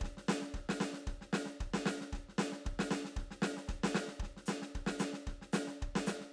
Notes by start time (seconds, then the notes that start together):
0.01 kick, snare
0.17 snare
0.28 snare
0.42 snare
0.54 kick, snare
0.69 snare
0.80 snare
0.93 snare
1.07 kick, snare
1.21 snare
1.33 snare
1.46 snare
1.60 kick, snare
1.74 snare
1.86 snare
2.01 snare
2.13 kick, snare
2.29 snare
2.38 snare
2.52 snare
2.65 kick, snare
2.79 snare
2.91 snare
3.04 snare
3.16 kick, snare
3.31 snare
3.42 snare
3.57 snare
3.68 kick, snare
3.84 snare
3.95 snare
4.08 snare
4.20 kick, snare
4.37 snare
4.46 snare, hi-hat pedal
4.62 snare
4.75 kick, snare
4.87 snare
4.99 snare, hi-hat pedal
5.13 snare
5.27 kick, snare
5.42 snare
5.53 snare, hi-hat pedal
5.67 snare
5.81 kick, snare
5.95 snare
6.06 snare, hi-hat pedal
6.20 snare